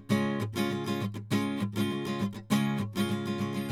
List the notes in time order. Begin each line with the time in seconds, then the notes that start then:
0.11 C#3 G#3 C#4 F4
0.58 C#3 G#3 C#4 F4
0.71 C#3 G#3 C#4
0.89 C#3 G#3 C#4 F4
1.33 G#3 C#4 F4
1.78 C#3 G#3 C#4 F4
1.92 C#3 G#3 C#4
2.07 G#3 C#4 F4
2.21 C#3
2.52 C#3 G#3 C#4 F4
2.98 C#3 G#3 C#4 F4
3.10 C#3 G#3 C#4 F4
3.27 G#3 C#4 F4
3.40 C#3 G#3 C#4 F4
3.56 C#3 G#3 C#4 F4